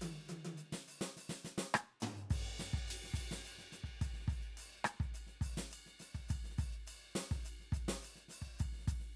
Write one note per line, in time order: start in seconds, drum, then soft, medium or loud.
0.01 hi-hat pedal medium
0.01 high tom loud
0.13 snare soft
0.29 hi-hat pedal medium
0.29 high tom medium
0.45 high tom medium
0.57 snare soft
0.57 hi-hat pedal medium
0.72 snare medium
0.88 hi-hat pedal medium
1.01 snare medium
1.17 snare soft
1.17 hi-hat pedal medium
1.29 snare medium
1.45 snare medium
1.45 hi-hat pedal medium
1.58 snare medium
1.74 cross-stick medium
1.74 hi-hat pedal medium
2.00 floor tom loud
2.00 hi-hat pedal medium
2.16 snare soft
2.30 kick medium
2.30 hi-hat pedal medium
2.30 ride medium
2.46 kick soft
2.59 snare medium
2.59 hi-hat pedal medium
2.73 kick medium
2.73 snare soft
2.87 hi-hat pedal medium
2.87 ride loud
3.04 snare soft
3.14 kick soft
3.14 hi-hat pedal medium
3.14 ride medium
3.30 snare medium
3.30 ride soft
3.44 hi-hat pedal medium
3.44 ride bell soft
3.58 snare soft
3.72 snare soft
3.72 hi-hat pedal medium
3.72 ride soft
3.84 kick soft
3.84 ride soft
4.01 kick medium
4.01 hi-hat pedal medium
4.01 ride bell medium
4.14 snare soft
4.20 snare soft
4.25 kick medium
4.25 snare soft
4.29 hi-hat pedal soft
4.29 ride soft
4.42 snare soft
4.42 ride soft
4.57 hi-hat pedal medium
4.57 ride bell medium
4.84 cross-stick medium
4.84 hi-hat pedal medium
5.00 kick soft
5.00 snare soft
5.14 hi-hat pedal medium
5.14 ride bell medium
5.27 snare soft
5.41 kick soft
5.41 hi-hat pedal medium
5.41 ride soft
5.57 snare medium
5.57 ride soft
5.71 hi-hat pedal medium
5.71 ride bell medium
5.86 snare soft
5.99 snare soft
5.99 hi-hat pedal medium
5.99 ride soft
6.15 kick soft
6.15 ride soft
6.29 kick soft
6.29 hi-hat pedal medium
6.29 ride bell medium
6.44 snare soft
6.50 snare soft
6.56 kick medium
6.56 snare soft
6.56 hi-hat pedal medium
6.56 ride soft
6.72 ride soft
6.87 hi-hat pedal medium
6.87 ride bell medium
7.15 snare medium
7.15 hi-hat pedal medium
7.15 ride medium
7.31 kick soft
7.31 snare soft
7.45 hi-hat pedal medium
7.45 ride bell medium
7.60 snare soft
7.72 kick medium
7.72 hi-hat pedal medium
7.72 ride soft
7.88 snare medium
7.88 ride soft
8.02 hi-hat pedal medium
8.02 ride bell medium
8.16 snare soft
8.28 snare soft
8.28 hi-hat pedal medium
8.28 ride soft
8.42 kick soft
8.42 ride soft
8.59 kick medium
8.59 hi-hat pedal medium
8.59 ride bell medium
8.73 snare soft
8.77 snare soft
8.81 snare soft
8.88 kick medium
8.88 hi-hat pedal medium
8.88 ride medium
9.00 snare soft